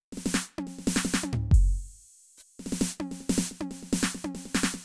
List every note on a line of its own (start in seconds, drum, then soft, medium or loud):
0.12 snare soft
0.17 snare medium
0.26 snare loud
0.34 snare loud
0.58 high tom loud
0.67 snare soft
0.78 snare soft
0.87 snare loud
0.96 snare loud
1.05 snare loud
1.14 snare loud
1.23 high tom loud
1.33 floor tom loud
1.51 kick loud
1.51 crash loud
2.37 hi-hat pedal loud
2.59 snare soft
2.66 snare medium
2.72 snare medium
2.81 snare loud
3.00 high tom loud
3.11 snare medium
3.20 snare soft
3.29 snare loud
3.38 snare loud
3.51 snare soft
3.61 high tom loud
3.71 snare medium
3.83 snare soft
3.93 snare loud
4.03 snare loud
4.14 snare medium
4.24 high tom loud
4.35 snare medium
4.45 snare soft
4.54 snare loud
4.63 snare loud
4.74 snare medium